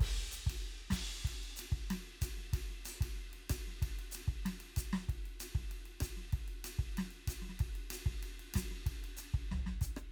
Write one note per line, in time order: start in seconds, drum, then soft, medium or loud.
0.01 kick medium
0.01 crash medium
0.01 ride loud
0.32 hi-hat pedal loud
0.47 kick soft
0.47 ride medium
0.91 kick soft
0.91 snare medium
0.91 hi-hat pedal medium
0.91 ride loud
1.25 kick soft
1.25 ride medium
1.44 ride soft
1.57 hi-hat pedal medium
1.57 ride loud
1.72 kick soft
1.91 snare medium
1.91 ride loud
2.22 kick soft
2.22 hi-hat pedal medium
2.22 ride loud
2.38 snare soft
2.54 kick soft
2.54 ride loud
2.70 snare soft
2.86 hi-hat pedal medium
2.86 ride loud
3.01 kick soft
3.01 ride loud
3.15 snare soft
3.34 ride medium
3.50 kick soft
3.50 cross-stick medium
3.50 hi-hat pedal medium
3.50 ride loud
3.68 snare soft
3.82 kick soft
3.82 ride medium
3.99 ride medium
4.12 hi-hat pedal loud
4.12 ride loud
4.28 kick soft
4.46 snare medium
4.46 ride medium
4.61 ride medium
4.77 kick soft
4.77 hi-hat pedal loud
4.77 ride loud
4.93 snare medium
5.09 kick soft
5.09 ride medium
5.26 ride medium
5.41 hi-hat pedal loud
5.41 ride loud
5.55 kick soft
5.55 snare soft
5.72 ride medium
5.86 ride medium
6.01 kick soft
6.01 cross-stick medium
6.01 hi-hat pedal medium
6.01 ride loud
6.17 snare soft
6.33 kick soft
6.33 ride medium
6.49 ride medium
6.65 hi-hat pedal medium
6.65 ride loud
6.79 kick soft
6.98 snare medium
6.98 ride medium
7.11 ride medium
7.28 kick soft
7.28 hi-hat pedal medium
7.28 ride loud
7.42 snare soft
7.49 snare soft
7.60 kick soft
7.60 ride medium
7.76 ride medium
7.91 hi-hat pedal medium
7.91 ride loud
8.06 kick soft
8.06 snare soft
8.23 ride medium
8.40 ride medium
8.54 kick soft
8.54 snare medium
8.54 hi-hat pedal loud
8.54 ride loud
8.71 snare soft
8.87 kick soft
8.87 ride medium
9.05 ride medium
9.17 hi-hat pedal medium
9.17 ride medium
9.34 kick soft
9.52 snare soft
9.52 floor tom medium
9.67 snare soft
9.82 kick soft
9.82 hi-hat pedal loud
9.82 ride medium
9.97 cross-stick medium